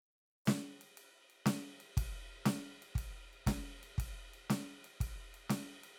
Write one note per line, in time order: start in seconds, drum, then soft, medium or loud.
0.46 snare loud
0.46 hi-hat pedal medium
0.46 ride medium
0.81 ride medium
0.97 ride medium
1.30 ride soft
1.46 snare loud
1.46 hi-hat pedal medium
1.46 ride loud
1.80 ride soft
1.97 kick medium
1.97 ride loud
2.46 snare medium
2.46 hi-hat pedal medium
2.46 ride medium
2.82 ride soft
2.95 kick soft
2.95 ride medium
3.33 ride soft
3.47 kick medium
3.47 snare medium
3.47 hi-hat pedal medium
3.47 ride loud
3.83 ride soft
3.98 kick soft
3.98 ride medium
4.34 ride soft
4.50 snare medium
4.50 hi-hat pedal medium
4.50 ride medium
4.84 ride soft
5.01 kick soft
5.01 ride medium
5.34 ride soft
5.50 snare medium
5.50 hi-hat pedal medium
5.50 ride loud
5.84 ride medium